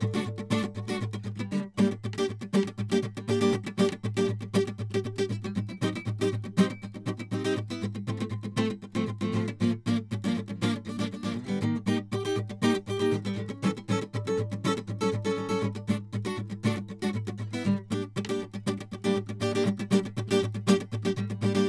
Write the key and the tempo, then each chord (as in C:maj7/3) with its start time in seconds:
G minor, 119 BPM
0.00 D:maj
1.52 G:min
5.56 C:min
7.58 F:maj7
9.59 A#:maj/5
11.61 D#:maj
13.63 A:maj/5
15.64 D:maj(2)/5
17.66 G:min